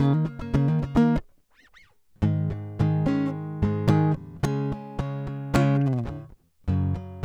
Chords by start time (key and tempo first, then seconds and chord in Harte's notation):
D# minor, 108 BPM
0.00 D#:(1,5)
2.21 G#:sus4
4.43 C#:maj
6.65 F#:sus4